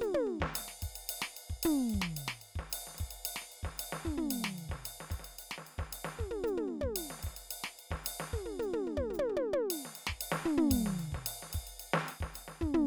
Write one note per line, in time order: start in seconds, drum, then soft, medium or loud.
0.01 hi-hat pedal medium
0.01 mid tom loud
0.14 high tom loud
0.26 mid tom soft
0.40 kick soft
0.40 snare medium
0.54 hi-hat pedal medium
0.54 ride bell loud
0.68 snare soft
0.82 kick soft
0.82 ride medium
0.96 ride medium
1.09 hi-hat pedal medium
1.09 ride bell loud
1.22 snare loud
1.37 ride medium
1.50 kick soft
1.63 floor tom loud
1.63 hi-hat pedal medium
1.63 ride bell loud
1.90 ride medium
1.94 kick soft
2.00 kick soft
2.00 snare loud
2.17 hi-hat pedal medium
2.17 ride bell medium
2.28 snare loud
2.42 ride soft
2.56 kick soft
2.56 snare soft
2.70 hi-hat pedal medium
2.70 ride bell loud
2.87 snare soft
2.95 snare soft
2.95 ride medium
3.00 kick soft
3.07 snare soft
3.07 ride medium
3.11 snare soft
3.25 hi-hat pedal medium
3.25 ride bell loud
3.36 snare medium
3.42 snare soft
3.52 ride soft
3.63 kick soft
3.63 snare soft
3.78 hi-hat pedal medium
3.78 ride bell loud
3.93 snare medium
4.04 kick soft
4.04 floor tom medium
4.17 floor tom medium
4.31 hi-hat pedal medium
4.31 ride bell loud
4.44 snare loud
4.58 ride soft
4.69 kick soft
4.69 snare soft
4.85 hi-hat pedal medium
4.85 ride bell loud
5.01 snare soft
5.10 kick soft
5.10 snare soft
5.10 ride medium
5.20 snare soft
5.25 ride medium
5.39 hi-hat pedal medium
5.39 ride bell medium
5.51 snare medium
5.58 snare soft
5.67 ride soft
5.78 kick soft
5.78 snare soft
5.93 hi-hat pedal medium
5.93 ride bell medium
6.05 snare medium
6.18 kick soft
6.18 mid tom medium
6.26 kick soft
6.31 mid tom medium
6.43 hi-hat pedal medium
6.43 mid tom loud
6.57 mid tom medium
6.67 mid tom soft
6.81 kick soft
6.81 high tom loud
6.96 hi-hat pedal medium
6.96 ride bell loud
7.10 snare soft
7.19 snare soft
7.19 ride medium
7.24 kick soft
7.24 snare soft
7.33 snare soft
7.33 ride medium
7.51 hi-hat pedal medium
7.51 ride loud
7.64 snare medium
7.79 ride soft
7.91 kick soft
7.91 snare medium
8.04 hi-hat pedal medium
8.04 ride loud
8.20 snare medium
8.33 kick soft
8.33 mid tom medium
8.39 kick soft
8.45 mid tom medium
8.59 hi-hat pedal medium
8.59 mid tom loud
8.73 mid tom loud
8.87 mid tom medium
8.97 kick soft
8.97 high tom loud
9.10 mid tom medium
9.14 hi-hat pedal medium
9.19 high tom loud
9.29 mid tom medium
9.37 high tom loud
9.53 high tom loud
9.70 hi-hat pedal medium
9.70 ride loud
9.85 snare soft
9.94 hi-hat pedal soft
9.94 ride medium
10.07 kick soft
10.07 snare loud
10.21 hi-hat pedal medium
10.21 ride loud
10.32 snare medium
10.45 floor tom loud
10.57 floor tom loud
10.71 kick medium
10.71 hi-hat pedal medium
10.71 ride loud
10.84 kick soft
10.84 snare soft
10.99 ride soft
11.12 kick soft
11.12 snare soft
11.26 hi-hat pedal medium
11.26 ride bell loud
11.43 snare soft
11.50 snare soft
11.50 ride medium
11.55 kick soft
11.59 snare soft
11.67 ride bell medium
11.80 hi-hat pedal medium
11.80 ride medium
11.94 snare loud
12.08 ride medium
12.21 kick soft
12.21 snare soft
12.34 hi-hat pedal medium
12.34 ride bell medium
12.48 snare soft
12.61 kick soft
12.61 floor tom medium
12.69 kick soft
12.74 floor tom loud